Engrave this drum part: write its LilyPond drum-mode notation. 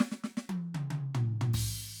\new DrumStaff \drummode { \time 4/4 \tempo 4 = 120 sn16 sn16 sn16 sn16 tommh8 toml16 toml16 r16 tomfh8 tomfh16 <cymc bd>4 | }